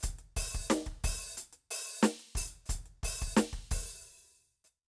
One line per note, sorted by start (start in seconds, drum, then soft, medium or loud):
0.01 closed hi-hat loud
0.01 kick medium
0.01 hi-hat pedal medium
0.19 closed hi-hat soft
0.37 open hi-hat loud
0.37 kick medium
0.55 kick medium
0.67 closed hi-hat loud
0.67 snare loud
0.67 hi-hat pedal medium
0.87 kick soft
0.87 closed hi-hat soft
1.04 open hi-hat loud
1.04 kick medium
1.35 closed hi-hat loud
1.35 hi-hat pedal medium
1.53 closed hi-hat medium
1.71 open hi-hat loud
2.02 closed hi-hat loud
2.02 snare loud
2.02 hi-hat pedal medium
2.20 closed hi-hat soft
2.35 open hi-hat loud
2.35 kick medium
2.35 hi-hat pedal soft
2.66 kick medium
2.66 hi-hat pedal medium
2.70 closed hi-hat loud
2.86 closed hi-hat soft
3.04 open hi-hat loud
3.04 kick medium
3.22 kick medium
3.34 closed hi-hat loud
3.34 snare loud
3.34 hi-hat pedal medium
3.53 kick soft
3.53 closed hi-hat soft
3.72 open hi-hat loud
3.72 kick medium
4.65 hi-hat pedal soft